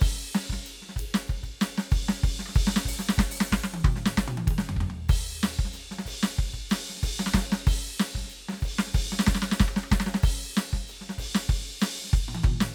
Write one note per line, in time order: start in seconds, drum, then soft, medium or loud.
0.01 kick loud
0.01 crash loud
0.34 snare loud
0.34 hi-hat pedal medium
0.34 ride medium
0.50 kick medium
0.50 snare medium
0.65 snare soft
0.65 hi-hat pedal medium
0.65 ride medium
0.82 snare soft
0.89 snare medium
0.96 kick medium
0.96 hi-hat pedal medium
0.96 ride loud
1.14 snare loud
1.27 kick medium
1.27 hi-hat pedal soft
1.27 ride medium
1.43 kick medium
1.43 ride soft
1.61 snare loud
1.61 hi-hat pedal medium
1.61 ride medium
1.78 snare loud
1.91 kick loud
1.91 hi-hat pedal medium
1.91 ride loud
2.09 snare loud
2.24 kick loud
2.24 ride loud
2.39 snare medium
2.46 cross-stick medium
2.46 snare medium
2.56 kick loud
2.56 ride loud
2.67 snare loud
2.76 snare loud
2.86 open hi-hat loud
2.86 kick medium
2.99 snare medium
3.09 snare loud
3.18 kick loud
3.18 snare loud
3.31 open hi-hat loud
3.41 snare loud
3.52 kick medium
3.52 snare loud
3.64 snare medium
3.74 high tom loud
3.85 kick loud
3.85 mid tom loud
3.96 snare medium
4.06 snare loud
4.17 kick medium
4.17 snare loud
4.28 mid tom loud
4.38 high tom loud
4.47 kick loud
4.47 mid tom medium
4.47 ride loud
4.58 snare loud
4.69 floor tom loud
4.77 kick medium
4.81 floor tom loud
4.90 floor tom medium
5.07 kick soft
5.07 crash loud
5.10 kick loud
5.42 snare loud
5.42 hi-hat pedal medium
5.42 ride medium
5.59 kick medium
5.65 snare medium
5.73 snare soft
5.73 hi-hat pedal medium
5.73 ride medium
5.91 snare medium
5.99 snare medium
6.06 kick soft
6.06 hi-hat pedal medium
6.06 ride loud
6.23 snare loud
6.37 kick medium
6.37 ride medium
6.53 kick medium
6.53 ride soft
6.70 snare loud
6.70 hi-hat pedal medium
6.70 ride loud
6.90 snare soft
6.97 snare soft
7.02 kick medium
7.02 snare soft
7.02 hi-hat pedal medium
7.02 ride loud
7.06 snare soft
7.20 snare loud
7.26 snare loud
7.33 kick medium
7.33 snare loud
7.33 hi-hat pedal medium
7.37 snare loud
7.52 snare loud
7.67 kick loud
7.67 hi-hat pedal medium
7.67 crash loud
7.99 snare loud
7.99 hi-hat pedal medium
7.99 ride medium
8.15 kick medium
8.15 snare soft
8.24 snare soft
8.28 snare soft
8.28 hi-hat pedal medium
8.28 ride medium
8.49 snare medium
8.53 snare medium
8.57 snare soft
8.57 hi-hat pedal medium
8.63 kick medium
8.63 ride loud
8.79 snare loud
8.87 snare soft
8.94 kick loud
8.94 snare soft
8.94 ride loud
9.12 snare medium
9.19 snare loud
9.27 kick loud
9.27 snare loud
9.35 snare loud
9.42 snare loud
9.52 snare loud
9.59 kick loud
9.59 snare loud
9.59 hi-hat pedal medium
9.68 cross-stick medium
9.76 snare loud
9.84 cross-stick medium
9.90 kick loud
9.90 snare loud
9.90 hi-hat pedal medium
10.00 snare loud
10.07 snare loud
10.14 snare loud
10.23 kick loud
10.23 hi-hat pedal soft
10.23 crash loud
10.56 snare loud
10.56 hi-hat pedal medium
10.56 ride medium
10.73 kick medium
10.73 snare medium
10.88 hi-hat pedal medium
10.88 ride medium
11.01 snare medium
11.09 snare medium
11.18 kick medium
11.18 hi-hat pedal medium
11.18 ride loud
11.35 snare loud
11.48 kick loud
11.48 hi-hat pedal soft
11.48 ride loud
11.64 ride soft
11.80 snare loud
11.80 hi-hat pedal medium
11.80 ride loud
12.05 snare soft
12.08 snare soft
12.12 kick loud
12.12 snare soft
12.12 hi-hat pedal medium
12.28 mid tom loud
12.35 high tom loud
12.44 kick loud
12.44 hi-hat pedal soft
12.44 mid tom loud
12.61 snare loud